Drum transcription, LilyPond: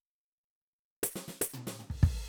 \new DrumStaff \drummode { \time 4/4 \tempo 4 = 118 r4 r4 tommh16 sn16 sn16 tommh16 toml16 sn16 tomfh16 <bd cymc>16 | <bd cymc>4 r4 r4 r4 | }